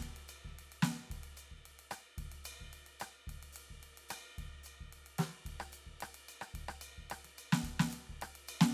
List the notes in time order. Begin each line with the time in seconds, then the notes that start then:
0.01 kick, ride
0.07 kick
0.17 snare, ride
0.29 hi-hat pedal, ride bell
0.46 kick, snare
0.52 snare
0.56 snare, ride
0.73 ride
0.83 snare, hi-hat pedal, ride bell
1.11 kick, snare, ride
1.17 kick
1.23 snare, ride
1.27 snare
1.37 hi-hat pedal, ride bell
1.52 kick
1.66 ride
1.80 ride
1.92 cross-stick, hi-hat pedal, ride bell
2.18 kick, snare, ride
2.24 kick
2.32 ride
2.45 hi-hat pedal, ride bell
2.60 kick, snare
2.63 snare
2.68 snare
2.74 ride
2.87 ride
3.00 cross-stick, hi-hat pedal, ride bell
3.27 kick, snare, ride
3.44 ride
3.53 hi-hat pedal, ride
3.71 kick
3.84 ride
3.98 ride
4.10 cross-stick, hi-hat pedal, ride bell
4.39 kick, ride
4.45 kick
4.64 hi-hat pedal, ride bell
4.81 kick
4.93 ride
5.07 ride
5.19 snare, hi-hat pedal, ride
5.46 kick, ride
5.52 kick
5.61 cross-stick
5.73 hi-hat pedal, ride
5.87 kick
6.01 cross-stick, ride
6.15 ride
6.29 hi-hat pedal, ride bell
6.42 cross-stick
6.55 kick, ride
6.60 kick
6.69 cross-stick
6.82 hi-hat pedal, ride bell
6.99 kick
7.11 cross-stick, ride
7.25 snare, ride
7.39 hi-hat pedal, ride bell
7.53 snare
7.64 kick, ride
7.70 kick
7.80 snare
7.91 hi-hat pedal, ride
8.10 kick
8.22 cross-stick, ride
8.36 ride
8.48 hi-hat pedal, ride bell
8.62 snare